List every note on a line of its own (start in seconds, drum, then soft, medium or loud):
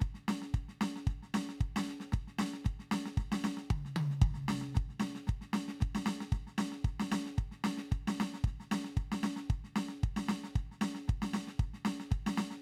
0.01 kick soft
0.01 snare soft
0.15 snare soft
0.29 snare medium
0.42 snare soft
0.54 kick soft
0.54 snare soft
0.69 snare soft
0.82 snare medium
0.96 snare soft
1.07 kick soft
1.07 snare soft
1.23 snare soft
1.35 snare loud
1.50 snare soft
1.61 kick soft
1.61 snare soft
1.77 snare loud
1.89 snare soft
2.01 snare soft
2.13 kick soft
2.13 snare soft
2.28 snare soft
2.39 snare loud
2.54 snare soft
2.65 kick soft
2.65 snare soft
2.80 snare soft
2.92 snare loud
3.06 snare soft
3.18 kick soft
3.18 snare soft
3.32 snare medium
3.45 snare medium
3.58 snare soft
3.71 kick soft
3.71 high tom medium
3.86 snare soft
3.97 high tom loud
4.11 snare soft
4.22 kick loud
4.22 high tom loud
4.35 snare soft
4.49 snare loud
4.62 snare soft
4.75 kick medium
4.75 snare soft
4.90 snare soft
5.00 snare medium
5.16 snare soft
5.28 kick soft
5.28 snare soft
5.42 snare soft
5.54 snare medium
5.69 snare soft
5.81 kick soft
5.81 snare soft
5.96 snare medium
6.07 snare loud
6.21 snare soft
6.33 kick soft
6.33 snare soft
6.48 snare soft
6.59 snare loud
6.73 snare soft
6.85 kick soft
6.85 snare soft
7.00 snare medium
7.12 snare loud
7.26 snare soft
7.38 kick soft
7.38 snare soft
7.52 snare soft
7.65 snare loud
7.78 snare soft
7.92 kick soft
7.92 snare soft
8.08 snare medium
8.21 snare medium
8.34 snare soft
8.45 kick medium
8.45 snare soft
8.61 snare soft
8.72 snare loud
8.85 snare soft
8.97 kick soft
8.97 snare soft
9.12 snare medium
9.24 snare medium
9.37 snare soft
9.50 kick soft
9.50 snare soft
9.65 snare soft
9.76 snare medium
9.89 snare soft
10.04 kick soft
10.04 snare soft
10.17 snare medium
10.29 snare medium
10.44 snare soft
10.56 kick soft
10.56 snare soft
10.72 snare soft
10.82 snare medium
10.96 snare soft
11.08 kick medium
11.08 snare soft
11.23 snare medium
11.34 snare medium
11.48 snare soft
11.60 kick medium
11.60 snare soft
11.74 snare soft
11.86 snare medium
12.00 snare soft
12.11 kick soft
12.11 snare soft
12.27 snare medium
12.38 snare medium
12.51 snare soft